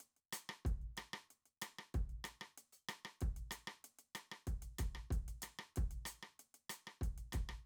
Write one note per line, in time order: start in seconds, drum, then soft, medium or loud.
0.01 closed hi-hat soft
0.17 closed hi-hat soft
0.33 closed hi-hat medium
0.33 cross-stick medium
0.50 cross-stick medium
0.66 kick medium
0.66 closed hi-hat soft
0.82 closed hi-hat soft
0.98 cross-stick medium
0.98 closed hi-hat soft
1.14 cross-stick medium
1.31 closed hi-hat soft
1.46 closed hi-hat soft
1.62 cross-stick medium
1.62 closed hi-hat medium
1.79 cross-stick medium
1.95 kick medium
1.95 closed hi-hat soft
2.10 closed hi-hat soft
2.25 cross-stick medium
2.25 closed hi-hat soft
2.42 cross-stick medium
2.58 closed hi-hat soft
2.73 closed hi-hat soft
2.89 cross-stick medium
2.89 closed hi-hat soft
3.06 cross-stick medium
3.22 kick medium
3.22 closed hi-hat soft
3.37 closed hi-hat soft
3.52 cross-stick medium
3.52 closed hi-hat medium
3.68 cross-stick medium
3.85 closed hi-hat soft
3.99 closed hi-hat soft
4.16 cross-stick medium
4.16 closed hi-hat soft
4.32 cross-stick medium
4.48 kick medium
4.48 closed hi-hat soft
4.63 closed hi-hat soft
4.79 kick medium
4.79 cross-stick soft
4.79 closed hi-hat medium
4.96 cross-stick soft
5.11 kick medium
5.11 closed hi-hat soft
5.29 closed hi-hat soft
5.43 cross-stick medium
5.43 closed hi-hat medium
5.60 cross-stick medium
5.77 kick medium
5.77 closed hi-hat soft
5.92 closed hi-hat soft
6.06 closed hi-hat medium
6.06 cross-stick medium
6.24 cross-stick soft
6.40 closed hi-hat soft
6.55 closed hi-hat soft
6.70 closed hi-hat medium
6.70 cross-stick medium
6.88 cross-stick soft
7.02 kick medium
7.02 closed hi-hat soft
7.18 closed hi-hat soft
7.33 kick medium
7.33 cross-stick medium
7.33 closed hi-hat soft
7.50 cross-stick medium